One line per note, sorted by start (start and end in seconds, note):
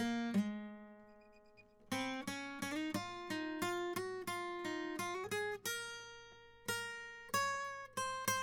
0.00 0.39 A#3
0.35 1.91 G#3
1.92 2.26 C4
2.28 2.61 C#4
2.63 2.76 C#4
2.76 2.93 D#4
2.95 3.10 D#4
2.95 3.61 F4
3.31 3.68 D#4
3.63 3.96 F4
3.97 4.26 F#4
4.28 4.98 F4
4.66 5.03 D#4
5.00 5.15 F4
5.15 5.30 F#4
5.32 5.61 G#4
5.66 6.66 A#4
5.66 5.96 A#4
6.69 7.31 A#4
7.34 7.89 C#5
7.98 8.26 C5
8.29 8.42 C5